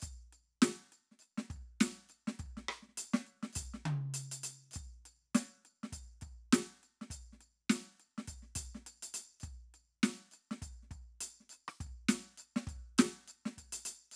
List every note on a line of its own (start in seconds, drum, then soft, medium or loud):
0.00 percussion medium
0.03 kick soft
0.03 percussion medium
0.34 percussion soft
0.63 snare loud
0.63 percussion loud
0.93 percussion soft
1.12 snare soft
1.20 percussion soft
1.23 percussion soft
1.39 snare medium
1.51 kick soft
1.51 percussion soft
1.57 kick soft
1.81 snare loud
1.81 percussion loud
2.10 percussion soft
2.28 snare medium
2.40 kick soft
2.40 percussion medium
2.46 kick soft
2.58 snare soft
2.69 high tom loud
2.83 snare soft
2.89 snare soft
2.98 percussion loud
3.15 snare loud
3.28 percussion soft
3.44 snare medium
3.54 percussion medium
3.56 kick soft
3.56 percussion loud
3.63 kick soft
3.66 kick soft
3.75 snare soft
3.86 mid tom loud
4.15 percussion loud
4.32 percussion loud
4.44 percussion loud
4.72 percussion medium
4.74 kick soft
4.74 percussion medium
5.06 percussion medium
5.36 snare loud
5.36 percussion loud
5.66 percussion soft
5.84 snare soft
5.93 kick soft
5.93 percussion medium
6.22 kick soft
6.22 percussion medium
6.54 snare loud
6.54 percussion loud
6.84 percussion soft
7.02 snare soft
7.11 kick soft
7.11 percussion medium
7.33 snare soft
7.40 snare soft
7.40 percussion soft
7.71 snare medium
7.71 percussion loud
8.01 percussion soft
8.19 snare medium
8.29 kick soft
8.29 percussion medium
8.43 snare soft
8.56 kick soft
8.56 percussion loud
8.66 kick soft
8.76 snare soft
8.87 percussion medium
9.03 percussion loud
9.15 percussion loud
9.41 kick soft
9.41 percussion medium
9.44 percussion medium
9.75 percussion soft
10.04 snare loud
10.04 percussion medium
10.32 percussion soft
10.35 percussion soft
10.52 snare medium
10.63 kick soft
10.63 percussion medium
10.83 snare soft
10.89 kick soft
10.89 snare soft
10.89 percussion soft
11.22 percussion loud
11.41 snare soft
11.50 percussion medium
11.54 percussion soft
11.69 cross-stick medium
11.81 kick soft
11.81 percussion medium
11.87 kick soft
11.90 kick soft
12.10 snare loud
12.10 percussion loud
12.39 percussion medium
12.41 percussion soft
12.57 snare medium
12.68 kick soft
12.68 percussion medium
12.74 kick soft
12.77 kick soft
12.99 snare loud
12.99 percussion loud
13.29 percussion medium
13.46 snare medium
13.59 kick soft
13.59 percussion medium
13.73 percussion loud
13.86 percussion loud
14.12 percussion medium